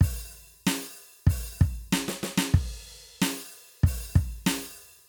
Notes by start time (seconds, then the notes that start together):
0.01 open hi-hat, kick
0.67 open hi-hat, snare
1.27 open hi-hat, kick
1.61 kick
1.91 snare, hi-hat pedal
2.08 snare
2.23 snare
2.38 snare
2.54 kick, crash
3.22 open hi-hat, snare
3.84 open hi-hat, kick
4.16 kick
4.47 open hi-hat, snare
4.54 snare